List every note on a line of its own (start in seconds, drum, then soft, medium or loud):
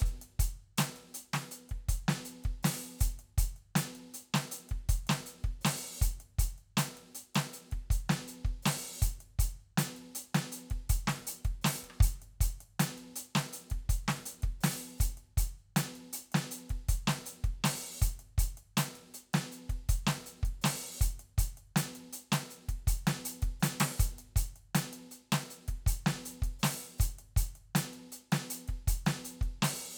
0.01 kick medium
0.01 hi-hat pedal soft
0.06 closed hi-hat medium
0.22 closed hi-hat medium
0.40 closed hi-hat loud
0.40 kick medium
0.78 closed hi-hat loud
0.78 snare loud
0.97 closed hi-hat soft
1.15 closed hi-hat loud
1.34 snare loud
1.34 closed hi-hat medium
1.52 closed hi-hat medium
1.70 kick soft
1.70 closed hi-hat soft
1.89 closed hi-hat loud
1.89 kick medium
2.09 snare loud
2.26 closed hi-hat medium
2.43 kick medium
2.43 snare soft
2.43 closed hi-hat soft
2.63 open hi-hat loud
2.63 snare loud
2.63 hi-hat pedal medium
2.99 closed hi-hat loud
2.99 kick medium
2.99 hi-hat pedal medium
3.20 closed hi-hat soft
3.38 closed hi-hat loud
3.38 kick medium
3.57 closed hi-hat soft
3.76 closed hi-hat loud
3.76 snare loud
3.96 closed hi-hat soft
4.15 closed hi-hat medium
4.35 snare loud
4.52 closed hi-hat loud
4.70 kick soft
4.70 closed hi-hat soft
4.90 closed hi-hat loud
4.90 kick medium
5.08 snare loud
5.08 closed hi-hat soft
5.27 closed hi-hat medium
5.45 kick medium
5.45 closed hi-hat soft
5.62 snare loud
5.62 hi-hat pedal soft
5.66 open hi-hat loud
6.01 closed hi-hat loud
6.01 kick medium
6.01 hi-hat pedal medium
6.21 closed hi-hat soft
6.39 closed hi-hat loud
6.39 kick medium
6.59 closed hi-hat soft
6.78 closed hi-hat loud
6.78 snare loud
6.98 closed hi-hat soft
7.15 closed hi-hat medium
7.35 snare loud
7.35 closed hi-hat medium
7.54 closed hi-hat medium
7.72 kick soft
7.72 closed hi-hat soft
7.91 closed hi-hat medium
7.91 kick medium
8.10 snare loud
8.10 closed hi-hat soft
8.28 closed hi-hat medium
8.45 kick medium
8.45 closed hi-hat soft
8.63 open hi-hat loud
8.63 snare loud
8.63 hi-hat pedal medium
9.02 closed hi-hat loud
9.02 kick medium
9.02 hi-hat pedal medium
9.21 closed hi-hat soft
9.40 closed hi-hat loud
9.40 kick medium
9.61 closed hi-hat soft
9.78 closed hi-hat loud
9.78 snare loud
9.97 closed hi-hat soft
10.16 closed hi-hat loud
10.35 snare loud
10.35 closed hi-hat medium
10.53 closed hi-hat loud
10.71 kick soft
10.71 closed hi-hat soft
10.90 closed hi-hat loud
10.90 kick medium
11.08 snare loud
11.28 closed hi-hat loud
11.45 kick medium
11.45 closed hi-hat soft
11.62 snare loud
11.62 hi-hat pedal soft
11.67 open hi-hat loud
11.83 kick soft
11.83 closed hi-hat soft
11.91 cross-stick medium
12.01 closed hi-hat loud
12.01 kick loud
12.23 closed hi-hat soft
12.41 closed hi-hat loud
12.41 kick medium
12.61 closed hi-hat soft
12.80 closed hi-hat loud
12.80 snare loud
12.98 closed hi-hat soft
13.16 closed hi-hat loud
13.36 snare loud
13.36 closed hi-hat soft
13.54 closed hi-hat medium
13.71 kick soft
13.71 closed hi-hat medium
13.90 closed hi-hat loud
13.90 kick medium
14.09 snare loud
14.09 closed hi-hat soft
14.26 closed hi-hat loud
14.43 kick medium
14.43 closed hi-hat soft
14.61 open hi-hat loud
14.61 snare loud
14.61 hi-hat pedal medium
14.99 closed hi-hat loud
14.99 kick medium
14.99 hi-hat pedal medium
15.18 closed hi-hat soft
15.38 closed hi-hat loud
15.38 kick medium
15.60 closed hi-hat soft
15.77 closed hi-hat loud
15.77 snare loud
15.96 closed hi-hat soft
16.14 closed hi-hat loud
16.32 snare loud
16.32 closed hi-hat soft
16.41 snare soft
16.52 closed hi-hat loud
16.70 kick soft
16.70 closed hi-hat soft
16.89 closed hi-hat loud
16.89 kick medium
17.08 snare loud
17.27 closed hi-hat medium
17.45 kick medium
17.45 closed hi-hat soft
17.65 open hi-hat loud
17.65 snare loud
18.01 closed hi-hat loud
18.01 kick medium
18.01 hi-hat pedal medium
18.20 closed hi-hat soft
18.39 closed hi-hat loud
18.39 kick medium
18.58 closed hi-hat soft
18.78 closed hi-hat loud
18.78 snare loud
18.96 closed hi-hat soft
19.15 closed hi-hat medium
19.34 snare loud
19.34 closed hi-hat medium
19.53 closed hi-hat medium
19.70 kick soft
19.70 closed hi-hat soft
19.90 closed hi-hat loud
19.90 kick medium
20.07 snare loud
20.27 closed hi-hat medium
20.44 kick medium
20.44 closed hi-hat medium
20.62 open hi-hat loud
20.62 snare loud
20.62 hi-hat pedal medium
21.00 closed hi-hat loud
21.00 kick medium
21.00 hi-hat pedal medium
21.20 closed hi-hat soft
21.39 closed hi-hat loud
21.39 kick medium
21.58 closed hi-hat soft
21.77 open hi-hat loud
21.77 snare loud
21.96 closed hi-hat medium
22.13 closed hi-hat loud
22.33 snare loud
22.33 closed hi-hat medium
22.51 closed hi-hat medium
22.69 kick soft
22.69 closed hi-hat medium
22.88 closed hi-hat loud
22.88 kick medium
23.08 snare loud
23.08 closed hi-hat medium
23.26 closed hi-hat loud
23.43 kick medium
23.43 closed hi-hat medium
23.60 closed hi-hat loud
23.60 snare loud
23.60 hi-hat pedal soft
23.81 snare loud
23.81 open hi-hat loud
23.98 closed hi-hat loud
23.98 kick medium
23.98 hi-hat pedal soft
24.19 closed hi-hat medium
24.37 closed hi-hat loud
24.37 kick medium
24.56 closed hi-hat soft
24.75 closed hi-hat loud
24.75 snare loud
24.94 closed hi-hat medium
25.12 closed hi-hat medium
25.33 snare loud
25.33 closed hi-hat medium
25.51 closed hi-hat medium
25.69 kick soft
25.69 closed hi-hat medium
25.87 closed hi-hat loud
25.87 kick medium
26.07 snare loud
26.26 closed hi-hat medium
26.43 kick medium
26.43 closed hi-hat medium
26.60 snare loud
26.60 hi-hat pedal soft
26.64 open hi-hat loud
26.99 closed hi-hat loud
26.99 kick medium
26.99 hi-hat pedal medium
27.19 closed hi-hat soft
27.37 closed hi-hat loud
27.37 kick medium
27.56 closed hi-hat soft
27.76 closed hi-hat loud
27.76 snare loud
27.94 closed hi-hat soft
28.13 closed hi-hat medium
28.33 snare loud
28.33 closed hi-hat medium
28.51 closed hi-hat loud
28.68 kick soft
28.68 closed hi-hat soft
28.88 closed hi-hat loud
28.88 kick medium
29.07 snare loud
29.07 closed hi-hat medium
29.25 closed hi-hat medium
29.42 kick medium
29.42 closed hi-hat soft
29.63 open hi-hat loud
29.63 snare loud